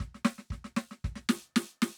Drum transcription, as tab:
SD |ggoggooggoo-o-o-|
BD |o---o---o-------|